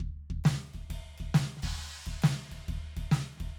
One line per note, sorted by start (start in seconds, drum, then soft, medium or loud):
0.00 kick medium
0.30 kick medium
0.44 snare soft
0.44 snare loud
0.44 ride soft
0.44 floor tom soft
0.74 kick soft
0.74 ride bell soft
0.81 snare soft
0.89 kick medium
0.89 snare soft
0.89 ride medium
0.92 snare soft
0.95 snare soft
1.18 kick medium
1.18 ride bell medium
1.34 snare loud
1.34 ride medium
1.57 snare soft
1.62 kick medium
1.62 snare soft
1.62 crash loud
1.68 snare soft
1.73 snare soft
1.78 snare soft
1.85 snare soft
1.97 snare soft
2.06 kick medium
2.06 ride medium
2.22 snare loud
2.22 ride medium
2.48 kick soft
2.48 snare soft
2.48 ride medium
2.58 snare soft
2.61 snare soft
2.64 snare soft
2.67 kick medium
2.67 snare soft
2.67 ride medium
2.70 snare soft
2.97 kick medium
2.97 ride medium
3.11 snare loud
3.11 ride soft
3.37 kick medium
3.37 snare soft
3.37 ride medium
3.46 snare soft
3.51 snare soft
3.55 snare soft